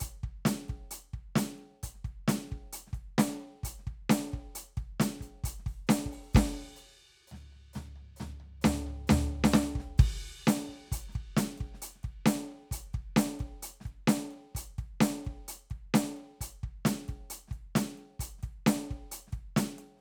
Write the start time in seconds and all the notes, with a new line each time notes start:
0.01 closed hi-hat, kick
0.24 kick, closed hi-hat
0.46 closed hi-hat, snare
0.69 kick, closed hi-hat
0.92 closed hi-hat
1.14 kick, closed hi-hat
1.36 closed hi-hat, snare
1.59 closed hi-hat
1.84 closed hi-hat, kick
1.95 snare
2.05 kick, closed hi-hat
2.29 closed hi-hat, snare
2.50 kick, closed hi-hat
2.74 closed hi-hat
2.88 snare
2.94 kick, closed hi-hat
3.19 closed hi-hat, snare
3.41 closed hi-hat
3.64 closed hi-hat, kick
3.80 snare
3.88 kick, closed hi-hat
4.10 closed hi-hat, snare
4.33 kick, closed hi-hat
4.56 closed hi-hat
4.78 kick, closed hi-hat
5.01 closed hi-hat, snare
5.21 closed hi-hat, kick
5.45 closed hi-hat, kick
5.60 snare
5.67 open hi-hat, kick
5.88 open hi-hat, snare, hi-hat pedal
6.07 kick
6.12 open hi-hat
6.34 kick, snare, hi-hat pedal, crash
6.77 hi-hat pedal
7.28 hi-hat pedal
7.32 snare, floor tom
7.53 floor tom
7.74 snare, floor tom, hi-hat pedal
7.97 floor tom
8.17 snare, hi-hat pedal
8.21 floor tom
8.41 floor tom
8.62 snare, floor tom, hi-hat pedal
8.87 floor tom
9.08 snare, floor tom, hi-hat pedal
9.45 snare
9.52 snare, hi-hat pedal
9.76 kick, snare
9.99 kick, hi-hat pedal, crash
10.48 closed hi-hat, snare
10.69 kick, closed hi-hat
10.88 snare
10.93 closed hi-hat, kick
11.09 closed hi-hat, snare
11.16 kick
11.37 closed hi-hat, snare
11.58 kick, closed hi-hat
11.75 snare
11.83 closed hi-hat
11.96 snare
12.04 kick, closed hi-hat
12.27 closed hi-hat, snare
12.72 closed hi-hat, kick
12.94 kick, closed hi-hat
13.17 closed hi-hat, snare
13.40 kick, closed hi-hat
13.63 closed hi-hat
13.81 snare
13.86 kick, closed hi-hat
14.08 closed hi-hat, snare
14.31 closed hi-hat
14.56 closed hi-hat, kick
14.79 kick, closed hi-hat
15.01 closed hi-hat, snare
15.26 kick, closed hi-hat
15.49 closed hi-hat
15.71 kick, closed hi-hat
15.95 closed hi-hat, snare
16.17 closed hi-hat
16.42 closed hi-hat, kick
16.64 kick
16.86 closed hi-hat, snare
17.09 kick, closed hi-hat
17.31 closed hi-hat
17.48 kick, snare
17.54 closed hi-hat
17.76 closed hi-hat, snare
17.98 closed hi-hat
18.20 closed hi-hat, kick
18.39 snare
18.44 kick, closed hi-hat
18.67 closed hi-hat, snare
18.91 kick, closed hi-hat
19.12 closed hi-hat
19.28 snare
19.33 kick, closed hi-hat
19.57 closed hi-hat, snare
19.79 closed hi-hat
19.97 snare